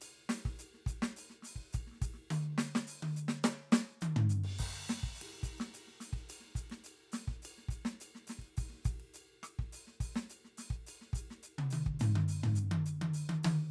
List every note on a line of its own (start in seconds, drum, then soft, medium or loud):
0.01 hi-hat pedal medium
0.01 ride bell medium
0.29 snare medium
0.29 hi-hat pedal medium
0.29 ride medium
0.45 kick soft
0.45 snare soft
0.59 hi-hat pedal medium
0.59 ride bell medium
0.74 snare soft
0.86 kick medium
0.86 hi-hat pedal medium
0.86 ride soft
1.02 snare medium
1.02 ride soft
1.16 hi-hat pedal medium
1.16 ride bell medium
1.30 snare soft
1.42 snare soft
1.42 hi-hat pedal medium
1.42 ride soft
1.56 kick soft
1.56 ride soft
1.73 kick medium
1.73 hi-hat pedal medium
1.73 ride bell medium
1.87 snare soft
1.92 snare soft
1.95 snare soft
2.02 kick medium
2.02 hi-hat pedal medium
2.02 ride medium
2.14 snare soft
2.30 hi-hat pedal medium
2.30 high tom loud
2.58 snare medium
2.58 hi-hat pedal medium
2.75 snare medium
2.87 hi-hat pedal medium
3.02 open hi-hat soft
3.02 high tom loud
3.16 hi-hat pedal medium
3.28 snare medium
3.44 snare loud
3.44 hi-hat pedal medium
3.72 snare loud
3.72 hi-hat pedal medium
4.01 closed hi-hat soft
4.01 hi-hat pedal medium
4.01 high tom loud
4.16 floor tom loud
4.29 hi-hat pedal medium
4.44 ride medium
4.59 kick soft
4.59 hi-hat pedal medium
4.59 crash medium
4.88 snare medium
4.88 hi-hat pedal medium
5.03 kick soft
5.03 snare soft
5.15 hi-hat pedal medium
5.22 ride medium
5.33 snare soft
5.43 kick soft
5.43 hi-hat pedal medium
5.43 ride soft
5.58 snare medium
5.58 ride soft
5.74 hi-hat pedal medium
5.74 ride medium
5.87 snare soft
6.00 snare soft
6.00 hi-hat pedal medium
6.00 ride soft
6.13 kick soft
6.13 ride soft
6.29 hi-hat pedal medium
6.29 ride bell medium
6.40 snare soft
6.45 snare soft
6.50 snare soft
6.55 kick soft
6.55 hi-hat pedal medium
6.55 ride soft
6.70 snare soft
6.70 ride soft
6.84 hi-hat pedal medium
6.84 ride bell medium
7.12 snare medium
7.12 hi-hat pedal medium
7.12 ride soft
7.28 kick soft
7.28 snare soft
7.42 hi-hat pedal medium
7.42 ride bell medium
7.58 snare soft
7.69 kick soft
7.69 hi-hat pedal medium
7.69 ride soft
7.85 snare medium
7.85 ride soft
8.00 hi-hat pedal medium
8.00 ride bell medium
8.15 snare soft
8.27 snare soft
8.27 hi-hat pedal medium
8.27 ride soft
8.39 kick soft
8.39 ride soft
8.57 kick medium
8.57 hi-hat pedal medium
8.57 ride soft
8.69 snare soft
8.73 snare soft
8.78 snare soft
8.80 snare soft
8.85 kick medium
8.85 hi-hat pedal medium
8.85 ride soft
9.00 ride soft
9.14 hi-hat pedal medium
9.14 ride bell medium
9.43 cross-stick medium
9.43 hi-hat pedal medium
9.43 ride soft
9.59 kick soft
9.59 snare soft
9.72 hi-hat pedal medium
9.72 ride bell soft
9.87 snare soft
10.00 kick soft
10.00 hi-hat pedal medium
10.00 ride soft
10.15 snare medium
10.15 ride soft
10.30 hi-hat pedal medium
10.30 ride bell medium
10.45 snare soft
10.57 snare soft
10.57 hi-hat pedal medium
10.57 ride soft
10.70 kick soft
10.70 ride soft
10.87 hi-hat pedal medium
10.87 ride bell medium
11.01 snare soft
11.13 kick medium
11.13 hi-hat pedal medium
11.13 ride medium
11.30 snare soft
11.43 hi-hat pedal medium
11.58 mid tom loud
11.70 hi-hat pedal medium
11.70 high tom loud
11.86 kick medium
11.99 floor tom loud
11.99 hi-hat pedal medium
12.16 high tom loud
12.28 hi-hat pedal medium
12.44 floor tom loud
12.55 hi-hat pedal medium
12.71 high tom loud
12.86 hi-hat pedal medium
13.02 high tom loud
13.14 hi-hat pedal medium
13.29 high tom loud
13.43 hi-hat pedal medium
13.43 high tom loud